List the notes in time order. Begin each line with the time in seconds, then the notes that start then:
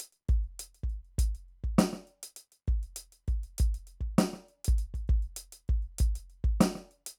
0.00 closed hi-hat
0.12 closed hi-hat
0.28 closed hi-hat, kick
0.44 closed hi-hat
0.59 closed hi-hat
0.74 closed hi-hat
0.83 kick
0.90 closed hi-hat
1.04 closed hi-hat
1.18 closed hi-hat, kick
1.29 kick
1.34 closed hi-hat
1.48 closed hi-hat
1.64 kick
1.78 closed hi-hat, snare
1.93 snare
2.07 closed hi-hat
2.23 closed hi-hat
2.36 closed hi-hat
2.52 closed hi-hat
2.67 kick, closed hi-hat
2.83 closed hi-hat
2.96 closed hi-hat
3.12 closed hi-hat
3.27 kick, closed hi-hat
3.43 closed hi-hat
3.58 closed hi-hat, kick
3.74 closed hi-hat
3.87 closed hi-hat
4.00 kick
4.18 closed hi-hat, snare
4.33 snare
4.48 closed hi-hat
4.64 closed hi-hat, kick
4.78 closed hi-hat
4.94 kick, closed hi-hat
5.08 kick, closed hi-hat
5.22 closed hi-hat
5.36 closed hi-hat
5.52 closed hi-hat
5.68 kick, closed hi-hat
5.82 closed hi-hat
5.98 closed hi-hat, kick
6.15 closed hi-hat
6.29 closed hi-hat
6.44 kick
6.61 closed hi-hat, snare
6.75 snare
6.91 closed hi-hat
7.06 closed hi-hat